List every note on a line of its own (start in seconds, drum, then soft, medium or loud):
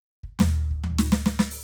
0.24 kick soft
0.40 snare loud
0.40 floor tom loud
0.71 kick soft
0.84 floor tom loud
0.99 snare loud
1.13 snare loud
1.26 snare loud
1.40 snare loud
1.52 open hi-hat medium